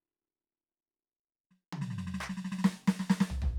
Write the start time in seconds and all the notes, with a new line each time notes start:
1.51 snare
1.73 high tom
1.82 snare
1.90 snare
1.98 snare
2.07 snare
2.14 snare
2.21 percussion
2.29 snare
2.37 snare
2.45 snare
2.52 snare
2.59 snare
2.65 snare
2.88 snare
3.00 snare
3.10 snare
3.21 snare
3.30 floor tom
3.42 floor tom